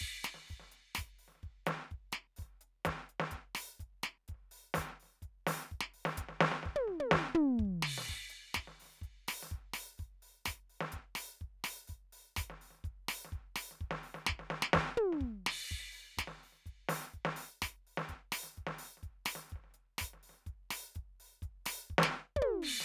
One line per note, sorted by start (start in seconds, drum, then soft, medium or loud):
0.01 kick soft
0.24 open hi-hat loud
0.24 snare medium
0.34 snare soft
0.48 kick soft
0.48 open hi-hat soft
0.60 snare soft
0.63 snare soft
0.68 snare soft
0.72 open hi-hat soft
0.95 open hi-hat medium
0.95 kick soft
0.95 snare medium
1.19 open hi-hat soft
1.28 snare soft
1.32 snare soft
1.35 snare soft
1.43 closed hi-hat soft
1.43 kick soft
1.66 open hi-hat medium
1.66 snare medium
1.91 closed hi-hat soft
1.91 kick soft
2.12 closed hi-hat medium
2.12 snare medium
2.36 open hi-hat soft
2.36 kick soft
2.36 snare soft
2.42 snare soft
2.61 open hi-hat soft
2.85 closed hi-hat medium
2.85 kick soft
2.85 snare medium
3.09 open hi-hat soft
3.20 snare medium
3.31 closed hi-hat medium
3.31 kick soft
3.55 open hi-hat medium
3.55 snare medium
3.80 closed hi-hat soft
3.80 kick soft
4.03 open hi-hat medium
4.03 snare loud
4.28 closed hi-hat soft
4.28 kick soft
4.28 snare soft
4.35 snare soft
4.51 open hi-hat soft
4.74 open hi-hat medium
4.74 kick soft
4.74 snare medium
4.90 snare soft
5.00 open hi-hat soft
5.00 snare soft
5.06 snare soft
5.08 snare soft
5.22 closed hi-hat soft
5.22 kick soft
5.47 open hi-hat loud
5.47 snare medium
5.71 kick soft
5.71 open hi-hat soft
5.81 snare medium
5.94 open hi-hat soft
6.05 snare medium
6.17 closed hi-hat loud
6.17 kick soft
6.29 snare soft
6.41 snare loud
6.52 snare medium
6.63 kick soft
6.63 snare soft
6.76 high tom loud
6.88 snare soft
7.00 high tom medium
7.11 kick soft
7.11 snare loud
7.34 floor tom loud
7.56 kick soft
7.56 hi-hat pedal soft
7.65 kick soft
7.83 snare loud
7.83 crash loud
7.98 snare soft
8.09 kick soft
8.30 open hi-hat medium
8.54 open hi-hat loud
8.54 kick soft
8.54 snare loud
8.67 snare soft
8.80 open hi-hat soft
8.80 snare soft
8.86 snare soft
8.89 snare soft
8.98 kick soft
8.98 snare soft
9.03 closed hi-hat soft
9.28 open hi-hat loud
9.28 snare medium
9.43 snare soft
9.51 kick soft
9.51 closed hi-hat soft
9.74 open hi-hat medium
9.74 snare medium
9.98 kick soft
9.98 open hi-hat soft
10.22 open hi-hat soft
10.45 open hi-hat medium
10.45 kick soft
10.45 snare loud
10.70 open hi-hat soft
10.81 snare medium
10.92 closed hi-hat medium
10.92 kick soft
11.15 open hi-hat medium
11.15 snare medium
11.40 kick soft
11.40 closed hi-hat soft
11.64 open hi-hat medium
11.64 snare medium
11.87 open hi-hat soft
11.87 kick soft
12.12 open hi-hat soft
12.37 open hi-hat medium
12.37 kick soft
12.37 snare medium
12.50 snare soft
12.61 open hi-hat soft
12.71 snare soft
12.75 snare soft
12.79 snare soft
12.84 kick soft
12.84 closed hi-hat soft
13.09 open hi-hat medium
13.09 snare medium
13.25 snare soft
13.32 kick soft
13.32 closed hi-hat soft
13.56 open hi-hat medium
13.56 snare medium
13.71 snare soft
13.81 kick soft
13.81 closed hi-hat soft
13.91 snare medium
14.03 open hi-hat soft
14.14 snare soft
14.27 kick soft
14.27 snare loud
14.39 snare soft
14.50 snare medium
14.62 snare loud
14.73 kick soft
14.73 snare loud
14.88 snare soft
14.97 mid tom loud
15.13 snare soft
15.21 kick soft
15.46 snare loud
15.46 crash medium
15.71 kick soft
15.80 snare soft
15.92 open hi-hat soft
16.18 closed hi-hat loud
16.18 kick soft
16.18 snare loud
16.27 snare soft
16.43 open hi-hat soft
16.52 snare soft
16.66 kick soft
16.66 closed hi-hat soft
16.89 open hi-hat medium
16.89 snare medium
17.13 kick soft
17.13 closed hi-hat soft
17.25 snare medium
17.36 open hi-hat medium
17.62 open hi-hat medium
17.62 kick soft
17.62 snare loud
17.87 open hi-hat soft
17.98 snare medium
18.09 open hi-hat soft
18.09 kick soft
18.32 open hi-hat loud
18.32 snare loud
18.43 snare soft
18.57 kick soft
18.57 closed hi-hat soft
18.67 snare medium
18.78 open hi-hat medium
18.97 snare soft
19.03 kick soft
19.03 closed hi-hat soft
19.25 open hi-hat loud
19.25 snare loud
19.35 snare soft
19.50 open hi-hat soft
19.50 kick soft
19.56 snare soft
19.64 snare soft
19.71 snare soft
19.71 open hi-hat soft
19.98 open hi-hat loud
19.98 kick soft
19.98 snare medium
20.13 snare soft
20.23 open hi-hat soft
20.29 snare soft
20.34 snare soft
20.47 kick soft
20.47 closed hi-hat soft
20.71 open hi-hat loud
20.71 snare medium
20.95 closed hi-hat soft
20.95 kick soft
21.20 open hi-hat soft
21.42 kick soft
21.42 closed hi-hat soft
21.66 open hi-hat loud
21.66 snare medium
21.90 kick soft
21.98 snare loud
22.02 snare medium
22.02 snare loud
22.36 kick soft
22.36 high tom loud
22.42 high tom loud
22.60 high tom soft
22.60 crash loud
22.80 snare soft